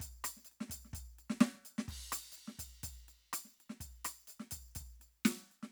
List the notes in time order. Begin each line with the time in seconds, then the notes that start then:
0.01 kick, percussion
0.25 cross-stick, percussion
0.37 snare
0.46 percussion
0.52 percussion
0.62 snare
0.69 kick, snare, percussion
0.86 snare
0.91 kick, snare
0.96 percussion
1.20 percussion
1.31 snare
1.42 snare
1.56 snare
1.66 percussion
1.79 snare
1.89 kick, crash
2.13 cross-stick, percussion
2.33 percussion
2.38 percussion
2.49 snare
2.60 kick, percussion
2.84 kick, percussion
3.09 percussion
3.34 cross-stick, percussion
3.46 snare
3.61 percussion
3.71 snare
3.81 kick, percussion
4.06 cross-stick, percussion
4.28 percussion
4.31 percussion
4.41 snare
4.52 kick, percussion
4.76 kick, percussion
4.82 kick
5.00 snare, percussion
5.26 snare, percussion
5.52 percussion
5.64 snare